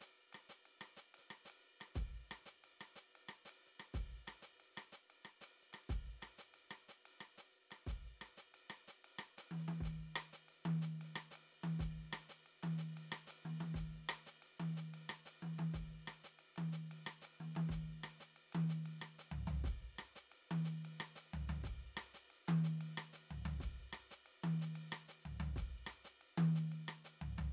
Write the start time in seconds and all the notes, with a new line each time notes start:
0.01 hi-hat pedal, ride
0.33 cross-stick, ride
0.49 hi-hat pedal
0.66 ride
0.81 cross-stick, ride
0.97 hi-hat pedal
1.14 hi-hat pedal, ride
1.31 cross-stick
1.45 hi-hat pedal
1.50 ride
1.81 cross-stick, ride
1.95 kick, hi-hat pedal, ride
2.31 cross-stick, ride
2.46 hi-hat pedal
2.64 ride
2.81 cross-stick, ride
2.96 hi-hat pedal
3.16 ride
3.29 cross-stick
3.45 hi-hat pedal
3.49 ride
3.67 hi-hat pedal
3.80 cross-stick, ride
3.94 kick, hi-hat pedal, ride
4.28 cross-stick, ride
4.42 hi-hat pedal
4.60 ride
4.77 cross-stick, ride
4.93 hi-hat pedal
5.10 ride
5.25 cross-stick
5.41 hi-hat pedal, ride
5.62 hi-hat pedal
5.73 cross-stick, ride
5.90 kick, hi-hat pedal, ride
6.22 cross-stick, ride
6.39 hi-hat pedal
6.54 ride
6.71 cross-stick, ride
6.89 hi-hat pedal
7.06 ride
7.21 cross-stick
7.38 hi-hat pedal, ride
7.71 cross-stick, ride
7.87 kick, hi-hat pedal, ride
8.21 cross-stick, ride
8.38 hi-hat pedal
8.54 ride
8.70 cross-stick, ride
8.88 hi-hat pedal
9.05 ride
9.19 cross-stick
9.38 hi-hat pedal, ride
9.51 high tom
9.59 hi-hat pedal
9.68 high tom, ride
9.81 kick, ride
9.85 hi-hat pedal
10.16 cross-stick, ride
10.33 hi-hat pedal
10.49 ride
10.54 hi-hat pedal
10.65 high tom, ride
10.82 hi-hat pedal
11.01 hi-hat pedal, ride
11.16 cross-stick
11.31 hi-hat pedal
11.36 ride
11.52 hi-hat pedal
11.64 high tom, ride
11.80 kick, hi-hat pedal, ride
12.02 hi-hat pedal
12.13 cross-stick, ride
12.29 hi-hat pedal
12.46 ride
12.63 high tom, ride
12.78 hi-hat pedal
12.97 ride
13.12 cross-stick
13.27 hi-hat pedal, ride
13.45 high tom
13.60 high tom, ride
13.74 kick, hi-hat pedal, ride
13.98 hi-hat pedal
14.09 cross-stick, ride
14.27 hi-hat pedal
14.42 ride
14.60 high tom, ride
14.77 hi-hat pedal
14.94 ride
15.10 cross-stick
15.26 hi-hat pedal, ride
15.43 high tom
15.59 high tom, ride
15.74 kick, hi-hat pedal, ride
16.08 cross-stick, ride
16.24 hi-hat pedal
16.39 ride
16.56 high tom, ride
16.73 hi-hat pedal
16.91 hi-hat pedal, ride
17.07 cross-stick
17.22 hi-hat pedal, ride
17.40 high tom
17.56 high tom, ride
17.69 kick, hi-hat pedal, ride
18.04 cross-stick, ride
18.20 hi-hat pedal
18.36 ride
18.53 high tom, ride
18.70 hi-hat pedal
18.86 ride
19.02 cross-stick
19.19 hi-hat pedal, ride
19.32 floor tom
19.47 floor tom, ride
19.64 kick, hi-hat pedal, ride
19.99 cross-stick, ride
20.16 hi-hat pedal
20.32 ride
20.51 high tom, ride
20.65 hi-hat pedal
20.85 ride
21.00 cross-stick
21.16 hi-hat pedal, ride
21.34 floor tom
21.49 floor tom, ride
21.64 kick, hi-hat pedal, ride
21.97 cross-stick, ride
22.14 hi-hat pedal
22.30 ride
22.48 high tom, ride
22.64 hi-hat pedal
22.81 ride
22.98 cross-stick
23.13 hi-hat pedal, ride
23.31 floor tom
23.45 floor tom, ride
23.60 kick, hi-hat pedal, ride
23.93 cross-stick, ride
24.11 hi-hat pedal
24.26 ride
24.44 high tom, ride
24.62 hi-hat pedal
24.76 ride
24.92 cross-stick
25.09 hi-hat pedal, ride
25.26 floor tom
25.40 floor tom, ride
25.56 kick, hi-hat pedal, ride
25.87 cross-stick, ride
26.05 hi-hat pedal
26.21 ride
26.38 high tom, ride
26.56 hi-hat pedal
26.72 ride
26.88 cross-stick
27.05 hi-hat pedal, ride
27.22 floor tom
27.38 floor tom, ride